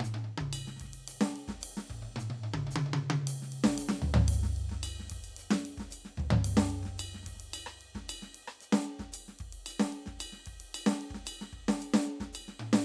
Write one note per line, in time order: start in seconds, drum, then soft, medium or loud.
0.01 hi-hat pedal medium
0.01 mid tom loud
0.15 mid tom medium
0.25 mid tom soft
0.39 kick soft
0.39 high tom loud
0.54 hi-hat pedal medium
0.54 ride bell loud
0.68 snare soft
0.77 snare soft
0.77 ride medium
0.81 kick soft
0.81 snare soft
0.91 snare soft
0.91 ride medium
1.08 hi-hat pedal medium
1.08 ride loud
1.22 snare medium
1.37 ride soft
1.48 kick soft
1.48 snare medium
1.61 hi-hat pedal medium
1.61 ride loud
1.78 snare medium
1.91 kick soft
1.91 mid tom medium
1.97 kick soft
2.03 mid tom medium
2.17 hi-hat pedal medium
2.17 mid tom loud
2.31 mid tom loud
2.44 mid tom medium
2.54 kick soft
2.54 high tom loud
2.68 mid tom medium
2.72 hi-hat pedal medium
2.77 high tom loud
2.87 mid tom medium
2.94 high tom loud
3.11 high tom loud
3.28 hi-hat pedal medium
3.28 ride loud
3.43 snare soft
3.52 hi-hat pedal soft
3.52 ride medium
3.65 kick soft
3.65 snare loud
3.79 hi-hat pedal medium
3.79 ride loud
3.90 snare medium
4.03 floor tom loud
4.15 floor tom loud
4.28 kick medium
4.28 hi-hat pedal medium
4.28 ride loud
4.42 kick soft
4.42 snare soft
4.57 ride soft
4.70 kick soft
4.70 snare soft
4.84 hi-hat pedal medium
4.84 ride bell loud
5.00 snare soft
5.08 snare soft
5.08 ride medium
5.12 kick soft
5.17 snare soft
5.25 ride bell medium
5.37 hi-hat pedal medium
5.37 ride medium
5.51 snare loud
5.66 ride medium
5.78 kick soft
5.78 snare soft
5.91 hi-hat pedal medium
5.91 ride bell medium
6.06 snare soft
6.18 kick soft
6.18 floor tom medium
6.26 kick soft
6.31 floor tom loud
6.45 hi-hat pedal medium
6.45 ride loud
6.58 snare loud
6.71 ride soft
6.83 kick soft
6.83 snare soft
6.99 hi-hat pedal medium
6.99 ride bell loud
7.15 snare soft
7.23 kick soft
7.23 snare soft
7.23 ride medium
7.28 snare soft
7.36 snare soft
7.40 snare soft
7.40 ride medium
7.54 hi-hat pedal medium
7.54 ride bell loud
7.67 cross-stick medium
7.82 ride soft
7.96 kick soft
7.96 snare soft
8.09 hi-hat pedal medium
8.09 ride bell loud
8.23 snare soft
8.35 ride medium
8.48 cross-stick medium
8.61 hi-hat pedal medium
8.61 ride soft
8.73 snare loud
8.85 ride soft
9.00 kick soft
9.00 snare soft
9.13 hi-hat pedal medium
9.13 ride bell medium
9.29 snare soft
9.40 kick soft
9.40 ride soft
9.47 kick soft
9.53 ride medium
9.67 hi-hat pedal medium
9.67 ride bell loud
9.80 snare medium
9.93 ride soft
10.07 kick soft
10.07 snare soft
10.14 kick soft
10.20 hi-hat pedal medium
10.20 ride bell loud
10.33 snare soft
10.40 cross-stick soft
10.47 kick soft
10.47 ride medium
10.61 ride medium
10.75 hi-hat pedal medium
10.75 ride bell loud
10.87 snare loud
10.92 snare soft
11.02 ride soft
11.11 kick soft
11.15 snare soft
11.26 hi-hat pedal medium
11.26 ride bell loud
11.42 snare soft
11.53 kick soft
11.53 ride soft
11.69 snare medium
11.80 hi-hat pedal medium
11.80 ride bell medium
11.94 snare loud
12.21 kick soft
12.21 snare medium
12.34 hi-hat pedal medium
12.34 ride bell loud
12.49 snare soft
12.60 mid tom medium
12.74 snare loud